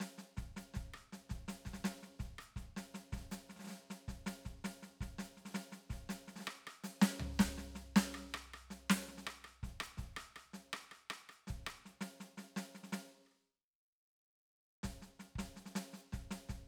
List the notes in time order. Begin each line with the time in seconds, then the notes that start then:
0.01 snare
0.18 snare
0.37 kick, snare
0.56 snare, hi-hat pedal
0.74 kick, snare
0.94 cross-stick
1.13 snare
1.29 kick, snare
1.48 snare, hi-hat pedal
1.65 kick, snare
1.73 snare
1.84 snare
2.03 snare
2.19 kick, snare
2.38 cross-stick, hi-hat pedal
2.56 kick, snare
2.77 snare
2.94 snare
3.12 kick, snare
3.16 snare
3.31 snare, hi-hat pedal
3.49 snare
3.56 snare
3.59 snare
3.64 snare
3.67 snare
3.69 snare
3.90 snare
4.08 kick, snare
4.26 snare, hi-hat pedal
4.45 kick, snare
4.64 snare, hi-hat pedal
4.83 snare
5.01 kick, snare
5.19 snare
5.23 hi-hat pedal
5.37 snare
5.45 snare
5.54 snare
5.72 snare, hi-hat pedal
5.90 kick, snare
5.91 snare
6.09 snare, hi-hat pedal
6.28 snare
6.36 snare
6.39 snare
6.40 snare
6.47 cross-stick
6.67 cross-stick
6.84 snare, hi-hat pedal
7.02 snare
7.20 floor tom
7.35 hi-hat pedal
7.39 kick, snare
7.58 snare
7.62 hi-hat pedal
7.75 snare
7.96 snare
8.14 cross-stick
8.34 cross-stick
8.54 cross-stick
8.70 snare, hi-hat pedal
8.90 snare
9.08 snare
9.18 snare
9.27 cross-stick
9.44 cross-stick
9.63 kick, snare
9.80 cross-stick, hi-hat pedal
9.97 kick, snare
10.17 cross-stick
10.36 cross-stick
10.53 snare
10.73 cross-stick
10.91 cross-stick
11.10 cross-stick
11.29 cross-stick, hi-hat pedal
11.47 kick, snare
11.67 cross-stick, hi-hat pedal
11.85 snare
12.01 snare
12.20 snare
12.37 snare
12.56 snare
12.75 snare
12.83 snare
12.92 snare
13.26 cross-stick
13.31 cross-stick, snare
14.83 kick, snare
15.02 snare
15.19 snare
15.35 kick, snare
15.56 snare
15.66 snare
15.75 snare
15.93 snare
15.97 hi-hat pedal
16.12 kick, snare
16.31 snare, hi-hat pedal
16.49 kick, snare